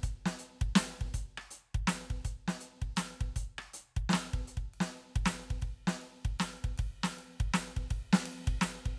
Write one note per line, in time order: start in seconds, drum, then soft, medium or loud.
0.04 closed hi-hat medium
0.04 kick medium
0.26 snare medium
0.40 closed hi-hat medium
0.62 kick medium
0.76 closed hi-hat loud
0.76 snare loud
1.01 kick soft
1.15 closed hi-hat medium
1.15 kick soft
1.38 cross-stick medium
1.51 closed hi-hat loud
1.75 kick medium
1.88 closed hi-hat loud
1.88 snare loud
2.11 kick soft
2.25 closed hi-hat medium
2.25 kick soft
2.48 snare medium
2.61 closed hi-hat medium
2.82 kick soft
2.97 closed hi-hat loud
2.97 snare medium
3.21 kick medium
3.37 closed hi-hat medium
3.37 kick soft
3.59 cross-stick medium
3.74 closed hi-hat loud
3.97 kick medium
4.10 snare loud
4.14 snare loud
4.34 kick medium
4.48 closed hi-hat medium
4.58 kick soft
4.74 ride soft
4.81 snare medium
4.98 ride soft
5.16 kick medium
5.26 snare loud
5.26 ride soft
5.51 kick soft
5.62 kick soft
5.62 ride soft
5.88 snare loud
6.02 ride soft
6.25 kick medium
6.40 snare medium
6.40 ride soft
6.65 kick medium
6.78 kick medium
6.78 ride medium
7.04 snare medium
7.19 ride medium
7.41 kick medium
7.54 snare loud
7.54 ride medium
7.77 kick soft
7.91 kick medium
7.91 ride medium
8.13 snare loud
8.26 ride loud
8.48 kick medium
8.62 snare loud
8.62 ride bell medium
8.86 kick medium